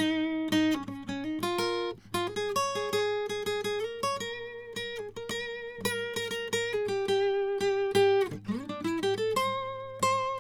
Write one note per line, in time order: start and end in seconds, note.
0.00 0.52 D#4
0.54 0.73 D#4
0.73 0.86 C#4
0.90 1.07 C#4
1.11 1.26 C#4
1.27 1.45 D#4
1.45 1.96 F4
1.60 1.97 A#4
2.16 2.30 F4
2.38 2.61 G#4
2.58 3.06 C#5
2.77 2.94 G#4
2.95 3.29 G#4
3.32 3.46 G#4
3.48 3.64 G#4
3.66 3.86 G#4
3.86 4.07 A#4
4.05 4.27 C#5
4.22 4.78 A#4
4.78 4.98 A#4
4.98 5.12 G#4
5.18 5.32 A#4
5.33 5.86 A#4
5.87 6.17 A#4
6.18 6.30 A#4
6.33 6.52 A#4
6.54 6.74 A#4
6.75 6.93 G#4
6.90 7.10 G4
7.10 7.62 G4
7.62 7.94 G4
7.97 8.32 G4
8.50 8.68 B3
8.71 8.86 D4
8.86 9.05 E4
9.04 9.20 G4
9.20 9.39 A4
9.38 10.02 C5
10.04 10.40 C5